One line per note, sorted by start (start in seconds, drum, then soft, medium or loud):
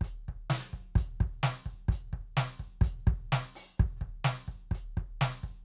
0.01 closed hi-hat medium
0.01 kick medium
0.28 kick medium
0.50 closed hi-hat loud
0.50 snare loud
0.73 kick medium
0.95 closed hi-hat loud
0.95 kick loud
1.20 kick loud
1.43 closed hi-hat loud
1.43 snare loud
1.51 snare soft
1.66 kick medium
1.88 closed hi-hat loud
1.88 kick loud
2.13 kick medium
2.37 closed hi-hat loud
2.37 snare loud
2.59 kick medium
2.81 closed hi-hat loud
2.81 kick loud
3.07 kick loud
3.32 snare loud
3.40 snare soft
3.55 open hi-hat loud
3.77 kick loud
3.77 hi-hat pedal soft
3.96 snare soft
4.01 kick medium
4.24 closed hi-hat loud
4.24 snare loud
4.48 kick medium
4.71 closed hi-hat medium
4.71 kick medium
4.97 kick medium
5.21 closed hi-hat medium
5.21 snare loud
5.30 snare soft
5.38 cross-stick soft
5.43 kick medium